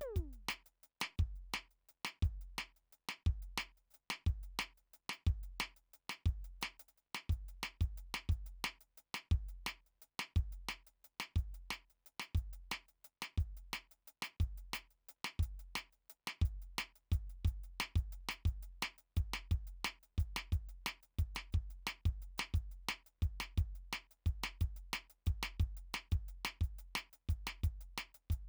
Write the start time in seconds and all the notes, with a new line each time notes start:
0.01 closed hi-hat, high tom
0.16 kick, closed hi-hat
0.33 closed hi-hat
0.49 snare, closed hi-hat
0.66 closed hi-hat
0.83 closed hi-hat
1.01 snare, closed hi-hat
1.19 kick, closed hi-hat
1.36 closed hi-hat
1.54 snare, closed hi-hat
1.71 closed hi-hat
1.89 closed hi-hat
2.05 snare, closed hi-hat
2.23 kick, closed hi-hat
2.41 closed hi-hat
2.58 snare, closed hi-hat
2.76 closed hi-hat
2.93 closed hi-hat
3.09 snare, closed hi-hat
3.26 kick, closed hi-hat
3.42 closed hi-hat
3.58 snare, closed hi-hat
3.77 closed hi-hat
3.91 closed hi-hat, hi-hat pedal
4.10 snare, closed hi-hat
4.27 kick, closed hi-hat
4.43 closed hi-hat
4.59 snare, closed hi-hat
4.78 closed hi-hat
4.94 closed hi-hat
5.10 snare, closed hi-hat
5.27 kick, closed hi-hat
5.43 closed hi-hat
5.60 snare, closed hi-hat
5.77 closed hi-hat
5.94 closed hi-hat
6.10 snare, closed hi-hat
6.26 kick, closed hi-hat
6.44 closed hi-hat
6.62 snare, closed hi-hat
6.80 closed hi-hat
6.88 closed hi-hat
6.98 closed hi-hat
7.15 snare, closed hi-hat
7.30 kick, closed hi-hat
7.49 closed hi-hat
7.63 snare, closed hi-hat
7.81 kick, closed hi-hat
7.98 closed hi-hat
8.14 snare, closed hi-hat
8.29 kick, closed hi-hat
8.46 closed hi-hat
8.64 snare, closed hi-hat
8.81 closed hi-hat
8.98 closed hi-hat
9.14 snare, closed hi-hat
9.31 kick, closed hi-hat
9.49 closed hi-hat
9.67 snare, closed hi-hat
9.86 closed hi-hat
10.02 closed hi-hat
10.19 snare, closed hi-hat
10.36 kick, closed hi-hat
10.52 closed hi-hat
10.69 snare, closed hi-hat
10.87 closed hi-hat
11.04 closed hi-hat
11.20 snare, closed hi-hat
11.36 kick, closed hi-hat
11.54 closed hi-hat
11.71 snare, closed hi-hat
11.90 closed hi-hat
12.06 closed hi-hat
12.20 snare, closed hi-hat
12.35 kick, closed hi-hat
12.53 closed hi-hat
12.71 snare, closed hi-hat
12.89 closed hi-hat
13.05 closed hi-hat
13.22 snare, closed hi-hat
13.38 kick, closed hi-hat
13.57 closed hi-hat
13.73 snare, closed hi-hat
13.91 closed hi-hat
14.08 closed hi-hat
14.22 snare, closed hi-hat
14.40 kick, closed hi-hat
14.58 closed hi-hat
14.74 snare, closed hi-hat
14.91 closed hi-hat
15.09 closed hi-hat
15.25 snare, closed hi-hat
15.39 kick, closed hi-hat
15.59 closed hi-hat
15.76 closed hi-hat, snare
15.93 closed hi-hat
16.10 closed hi-hat
16.27 snare, closed hi-hat
16.42 kick, closed hi-hat
16.62 closed hi-hat
16.78 closed hi-hat, snare
16.96 closed hi-hat
17.12 kick, closed hi-hat
17.30 closed hi-hat
17.45 kick, closed hi-hat
17.64 closed hi-hat
17.80 snare, closed hi-hat
17.96 kick, closed hi-hat
18.12 closed hi-hat
18.29 snare, closed hi-hat
18.45 kick, closed hi-hat
18.63 closed hi-hat
18.82 snare, closed hi-hat
18.98 closed hi-hat
19.17 kick, closed hi-hat
19.34 snare, closed hi-hat
19.51 kick, closed hi-hat
19.67 closed hi-hat
19.85 closed hi-hat, snare
20.03 closed hi-hat
20.18 kick, closed hi-hat
20.36 snare, closed hi-hat
20.52 kick, closed hi-hat
20.69 closed hi-hat
20.86 snare, closed hi-hat
21.03 closed hi-hat
21.19 kick, closed hi-hat
21.35 snare, closed hi-hat
21.53 kick, closed hi-hat
21.70 closed hi-hat
21.87 snare, closed hi-hat
22.06 kick, closed hi-hat
22.22 closed hi-hat
22.38 snare, closed hi-hat
22.54 kick, closed hi-hat
22.72 closed hi-hat
22.89 snare, closed hi-hat
23.06 closed hi-hat
23.22 kick, closed hi-hat
23.40 snare, closed hi-hat
23.58 kick, closed hi-hat
23.75 closed hi-hat
23.93 snare, closed hi-hat
24.11 closed hi-hat
24.26 kick, closed hi-hat
24.43 snare, closed hi-hat
24.61 kick, closed hi-hat
24.76 closed hi-hat
24.93 snare, closed hi-hat
25.10 closed hi-hat
25.26 kick, closed hi-hat
25.43 snare, closed hi-hat
25.60 kick, closed hi-hat
25.77 closed hi-hat
25.94 snare, closed hi-hat
26.12 kick, closed hi-hat
26.28 closed hi-hat
26.45 snare, closed hi-hat
26.61 kick, closed hi-hat
26.79 closed hi-hat
26.95 snare, closed hi-hat
27.13 closed hi-hat
27.29 kick, closed hi-hat
27.47 snare, closed hi-hat
27.64 kick, closed hi-hat
27.81 closed hi-hat
27.98 snare, closed hi-hat
28.15 closed hi-hat
28.30 kick, closed hi-hat